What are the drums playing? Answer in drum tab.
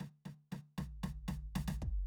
SD |g-g-g-g-g-o-oo--|
FT |g-g-g-o-o-o-oo--|
BD |--------------o-|